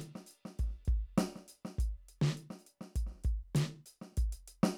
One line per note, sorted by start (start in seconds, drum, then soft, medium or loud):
0.01 closed hi-hat soft
0.15 snare soft
0.26 hi-hat pedal medium
0.31 closed hi-hat soft
0.45 snare soft
0.59 kick soft
0.59 closed hi-hat soft
0.63 snare soft
0.67 snare soft
0.70 snare soft
0.85 kick soft
0.85 closed hi-hat soft
0.97 kick soft
1.18 closed hi-hat medium
1.18 snare medium
1.36 snare soft
1.48 hi-hat pedal medium
1.65 snare soft
1.78 closed hi-hat medium
1.78 kick soft
1.78 snare soft
2.08 closed hi-hat soft
2.21 snare medium
2.37 closed hi-hat soft
2.50 snare soft
2.59 hi-hat pedal soft
2.66 closed hi-hat soft
2.81 snare soft
2.96 closed hi-hat medium
2.96 kick soft
3.07 snare soft
3.11 snare soft
3.15 snare soft
3.18 snare soft
3.24 kick soft
3.24 closed hi-hat soft
3.55 open hi-hat medium
3.55 snare medium
3.86 hi-hat pedal medium
3.86 open hi-hat soft
4.01 snare soft
4.12 snare soft
4.17 closed hi-hat medium
4.17 kick soft
4.32 closed hi-hat medium
4.48 closed hi-hat medium
4.63 snare medium